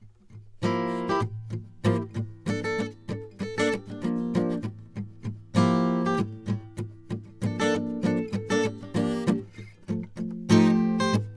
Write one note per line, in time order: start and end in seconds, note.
0.64 1.20 F3
0.64 1.21 A#3
0.64 1.09 E4
0.64 1.04 G4
1.10 1.25 E4
1.10 1.25 G4
1.54 1.66 E3
1.85 2.06 F3
1.85 2.08 A#3
1.85 2.12 E4
1.85 2.16 G4
2.47 2.91 F3
2.47 2.78 A#3
2.47 2.60 D4
2.47 2.62 A4
2.61 2.79 D4
2.65 2.81 A4
2.79 2.96 A#3
2.79 2.98 D4
2.79 2.97 A4
3.12 3.30 D4
3.12 3.33 A4
3.44 3.59 A4
3.59 3.73 A#3
3.59 3.73 D4
3.59 3.79 A4
3.91 4.04 D4
4.02 4.35 F3
4.02 4.35 A#3
4.02 4.21 D4
4.36 4.61 F3
4.36 4.61 A#3
4.36 4.62 D4
5.56 6.24 F3
5.56 6.29 A#3
5.56 6.06 E4
5.56 6.03 G4
6.07 6.23 G4
7.43 8.02 F3
7.43 7.61 A#3
7.43 7.60 D4
7.47 7.58 A4
7.60 7.75 A#3
7.60 7.75 D4
7.60 7.75 A4
7.75 8.05 A#3
7.75 8.04 D4
7.75 8.04 A4
8.04 8.26 F3
8.04 8.27 A#3
8.04 8.29 D4
8.04 8.29 A4
8.36 8.50 A4
8.51 8.65 A#3
8.51 8.72 D4
8.51 8.64 A4
8.64 8.76 A3
8.64 8.81 G4
8.83 8.98 D4
8.95 9.19 F3
8.95 9.28 A#3
8.95 9.16 D4
8.95 9.29 G4
9.28 9.43 F3
9.28 9.44 A#3
9.28 9.46 D4
9.28 9.51 G4
9.89 10.12 F3
9.89 10.04 A3
10.18 10.50 F3
10.18 10.48 A3
10.50 11.20 F3
10.50 11.20 A3
10.50 10.76 D#4
10.50 11.00 G4
10.50 10.98 C5
11.01 11.24 G4
11.01 11.20 C5